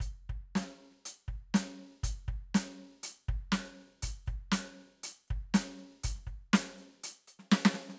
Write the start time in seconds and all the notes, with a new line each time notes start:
0.02 closed hi-hat, kick, snare
0.29 kick, closed hi-hat
0.55 closed hi-hat, snare
0.61 snare
0.78 closed hi-hat
0.91 snare
1.05 closed hi-hat
1.28 kick, closed hi-hat
1.35 kick
1.54 closed hi-hat, snare
1.59 snare
2.03 closed hi-hat, kick
2.28 kick, closed hi-hat
2.54 closed hi-hat, snare
3.03 closed hi-hat
3.26 kick, closed hi-hat
3.52 closed hi-hat, snare
4.02 closed hi-hat, kick
4.26 closed hi-hat, kick
4.52 closed hi-hat, snare
4.76 closed hi-hat
5.03 closed hi-hat
5.28 kick, closed hi-hat
5.54 closed hi-hat, snare
5.61 snare
5.78 closed hi-hat
5.93 snare
6.04 closed hi-hat, kick
6.15 snare
6.27 kick, closed hi-hat
6.53 closed hi-hat, snare
6.60 snare
6.78 closed hi-hat
6.94 snare
7.04 closed hi-hat
7.27 closed hi-hat
7.39 snare
7.51 snare, hi-hat pedal
7.65 snare
7.74 snare
7.89 snare